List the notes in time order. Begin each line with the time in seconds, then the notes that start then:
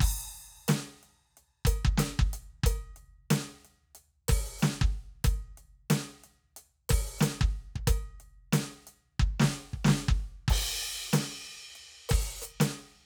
0.01 kick, crash
0.69 snare, closed hi-hat
1.03 closed hi-hat
1.38 closed hi-hat
1.66 kick, closed hi-hat
1.85 kick
1.98 snare, closed hi-hat
2.20 kick
2.34 closed hi-hat
2.64 kick, closed hi-hat
2.97 closed hi-hat
3.31 snare, closed hi-hat
3.65 closed hi-hat
3.95 closed hi-hat
4.29 kick, open hi-hat
4.59 snare, hi-hat pedal
4.63 closed hi-hat
4.82 kick
5.25 kick, closed hi-hat
5.58 closed hi-hat
5.90 snare, closed hi-hat
6.24 closed hi-hat
6.57 closed hi-hat
6.90 kick, open hi-hat
7.19 snare, hi-hat pedal
7.23 closed hi-hat
7.41 kick
7.76 kick
7.88 kick, closed hi-hat
8.21 closed hi-hat
8.53 snare, closed hi-hat
8.87 closed hi-hat
9.20 kick
9.40 snare
9.42 snare
9.74 kick
9.85 snare
9.89 snare
10.09 kick
10.49 kick, crash
11.13 snare, closed hi-hat
11.46 closed hi-hat
11.76 closed hi-hat
12.10 open hi-hat, kick
12.42 hi-hat pedal
12.61 snare, closed hi-hat